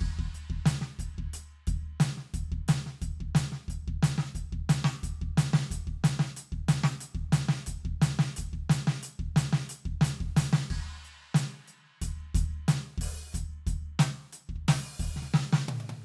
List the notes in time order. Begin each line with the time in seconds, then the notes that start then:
0.01 kick, crash
0.19 kick
0.35 percussion
0.50 kick
0.66 snare, percussion
0.82 snare
0.99 kick, percussion
1.18 kick
1.34 percussion
1.67 kick, percussion
2.00 snare, percussion
2.18 snare
2.34 kick, percussion
2.52 kick
2.68 snare, percussion
2.86 snare
2.94 snare
3.02 kick, percussion
3.21 kick
3.35 snare, percussion
3.52 snare
3.68 kick, percussion
3.88 kick
4.03 snare, percussion
4.18 snare
4.35 kick, percussion
4.53 kick
4.70 snare, percussion
4.85 snare
5.03 kick, percussion
5.22 kick
5.38 snare, percussion
5.54 snare
5.71 kick, percussion
5.87 kick
6.04 snare, percussion
6.20 snare
6.37 percussion
6.52 kick
6.69 snare, percussion
6.84 snare
6.91 snare
7.01 percussion
7.15 kick
7.33 snare, percussion
7.49 snare
7.67 kick, percussion
7.85 kick
8.02 snare, percussion
8.19 snare
8.37 kick, percussion
8.53 kick
8.70 snare, percussion
8.88 snare
9.03 percussion
9.19 kick
9.36 snare, percussion
9.53 snare
9.70 percussion
9.86 kick
10.01 snare, percussion
10.21 kick
10.37 snare, percussion
10.53 snare
10.71 kick, percussion, crash
11.05 percussion
11.35 snare, percussion
11.68 percussion
12.02 kick, percussion
12.35 kick, percussion
12.68 snare, percussion
12.98 kick, percussion
13.33 kick, percussion
13.35 percussion
13.67 kick, percussion
13.99 snare, percussion
14.33 percussion
14.49 kick
14.56 kick
14.68 snare, percussion
15.00 kick, percussion
15.16 snare
15.23 snare
15.34 snare
15.53 snare
15.69 high tom
15.80 high tom
15.90 high tom